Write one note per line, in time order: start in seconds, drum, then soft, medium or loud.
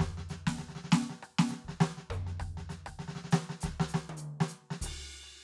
0.01 kick soft
0.01 snare medium
0.09 kick soft
0.12 kick soft
0.19 snare soft
0.30 snare medium
0.30 hi-hat pedal soft
0.48 kick soft
0.48 snare loud
0.60 snare soft
0.70 snare soft
0.77 snare medium
0.85 snare soft
0.92 snare loud
0.92 hi-hat pedal medium
1.11 snare soft
1.24 cross-stick medium
1.40 snare loud
1.49 snare soft
1.49 hi-hat pedal medium
1.66 kick soft
1.66 snare medium
1.82 snare loud
1.98 snare soft
2.11 kick soft
2.11 hi-hat pedal soft
2.11 floor tom medium
2.17 kick soft
2.28 snare soft
2.41 kick soft
2.41 cross-stick medium
2.49 kick soft
2.59 snare soft
2.71 snare medium
2.71 hi-hat pedal soft
2.88 kick soft
2.88 cross-stick medium
3.00 snare medium
3.09 snare medium
3.17 snare medium
3.25 snare soft
3.32 snare loud
3.32 hi-hat pedal medium
3.51 snare medium
3.62 kick medium
3.62 snare medium
3.62 hi-hat pedal loud
3.72 kick soft
3.76 kick soft
3.81 snare loud
3.90 hi-hat pedal medium
3.95 snare medium
4.11 open hi-hat soft
4.11 high tom loud
4.18 hi-hat pedal medium
4.42 snare loud
4.49 hi-hat pedal medium
4.72 snare medium
4.83 kick medium
4.83 hi-hat pedal loud
4.83 crash medium
4.87 kick soft
4.87 cross-stick soft
4.94 kick soft
5.04 cross-stick soft
5.25 cross-stick soft